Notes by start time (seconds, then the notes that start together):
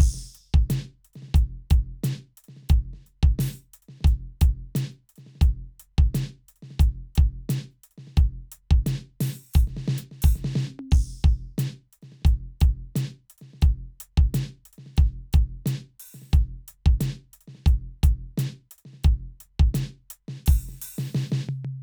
0.01 kick, crash
0.15 snare
0.19 snare
0.36 closed hi-hat
0.56 kick
0.72 closed hi-hat, snare
1.06 closed hi-hat
1.15 closed hi-hat, snare
1.24 snare
1.30 snare
1.36 closed hi-hat, kick, snare
1.72 closed hi-hat, kick
2.05 closed hi-hat, snare
2.39 closed hi-hat
2.45 closed hi-hat
2.50 snare
2.58 snare
2.64 snare
2.70 closed hi-hat, kick, snare
2.95 snare
3.08 closed hi-hat
3.24 kick
3.41 open hi-hat, snare
3.57 hi-hat pedal
3.75 closed hi-hat
3.84 closed hi-hat
3.90 snare
4.02 kick, snare
4.09 closed hi-hat
4.43 kick, closed hi-hat
4.77 closed hi-hat, snare
4.92 hi-hat pedal
5.11 closed hi-hat
5.17 snare, closed hi-hat
5.28 snare
5.37 snare
5.43 closed hi-hat, kick
5.81 closed hi-hat
6.00 kick
6.16 closed hi-hat, snare
6.50 closed hi-hat
6.57 closed hi-hat
6.64 snare
6.72 snare
6.81 closed hi-hat, kick, snare
7.17 closed hi-hat, kick
7.51 closed hi-hat, snare
7.72 hi-hat pedal
7.85 closed hi-hat
7.92 closed hi-hat
7.99 snare
8.09 snare
8.18 closed hi-hat, kick
8.53 closed hi-hat
8.72 kick
8.88 open hi-hat, snare
9.22 open hi-hat, snare
9.55 open hi-hat, kick
9.59 hi-hat pedal
9.69 snare
9.78 snare
9.89 snare
10.00 closed hi-hat
10.13 snare
10.24 open hi-hat, kick
10.33 snare, hi-hat pedal
10.46 snare
10.57 snare, hi-hat pedal
10.69 high tom
10.81 high tom
10.93 kick, crash
11.26 kick
11.60 open hi-hat, snare
11.94 closed hi-hat
12.03 snare, closed hi-hat
12.14 snare
12.24 kick, snare
12.28 closed hi-hat
12.62 closed hi-hat, kick
12.97 closed hi-hat, snare
13.11 hi-hat pedal
13.31 closed hi-hat
13.39 snare, closed hi-hat
13.55 snare
13.63 open hi-hat, kick
14.02 closed hi-hat
14.19 kick
14.36 closed hi-hat, snare
14.67 closed hi-hat
14.74 closed hi-hat
14.80 snare
14.88 snare
14.98 closed hi-hat, kick, snare
15.35 closed hi-hat, kick
15.67 closed hi-hat, snare
16.01 open hi-hat
16.09 open hi-hat
16.16 snare
16.23 snare
16.34 closed hi-hat, kick, snare, hi-hat pedal
16.69 closed hi-hat
16.87 kick
17.02 closed hi-hat, snare
17.35 closed hi-hat
17.42 closed hi-hat
17.49 snare
17.56 snare
17.68 closed hi-hat, kick
18.05 closed hi-hat, kick
18.39 closed hi-hat, snare
18.73 closed hi-hat
18.80 closed hi-hat
18.87 snare
18.95 snare
19.05 closed hi-hat, kick
19.42 closed hi-hat
19.61 kick
19.76 closed hi-hat, snare
20.12 closed hi-hat
20.30 snare
20.48 open hi-hat, kick
20.70 snare
20.75 snare
20.83 open hi-hat
21.00 snare
21.16 snare
21.34 snare
21.50 floor tom
21.66 floor tom